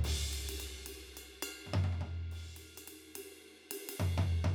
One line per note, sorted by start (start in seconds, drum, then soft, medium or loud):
0.05 ride loud
0.33 ride medium
0.49 ride loud
0.60 ride bell medium
0.87 ride loud
1.17 ride bell medium
1.43 ride bell loud
1.67 mid tom medium
1.74 mid tom loud
1.84 mid tom medium
1.93 mid tom medium
2.01 mid tom medium
2.32 ride medium
2.57 ride medium
2.78 ride bell medium
2.88 ride medium
3.16 ride loud
3.71 ride loud
3.89 ride loud
4.00 mid tom loud
4.18 mid tom loud
4.45 mid tom loud